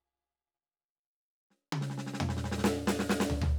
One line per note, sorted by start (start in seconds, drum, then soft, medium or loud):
1.50 snare soft
1.72 high tom loud
1.81 snare medium
1.90 snare soft
1.98 snare medium
2.06 snare medium
2.13 snare medium
2.20 mid tom loud
2.29 snare medium
2.36 snare medium
2.44 snare medium
2.51 snare medium
2.58 snare medium
2.64 snare loud
2.87 snare loud
2.99 snare medium
3.09 snare loud
3.20 snare loud
3.30 floor tom loud
3.41 floor tom loud